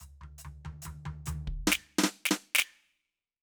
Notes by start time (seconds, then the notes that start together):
0.00 floor tom, hi-hat pedal
0.21 floor tom, high tom
0.38 hi-hat pedal
0.45 floor tom, high tom
0.65 floor tom, high tom
0.82 hi-hat pedal, high tom
0.86 floor tom
1.05 floor tom, high tom
1.26 floor tom, hi-hat pedal, high tom
1.47 kick
1.67 snare
1.72 snare
1.98 snare, hi-hat pedal
2.03 snare
2.25 snare
2.31 snare
2.55 snare
2.58 snare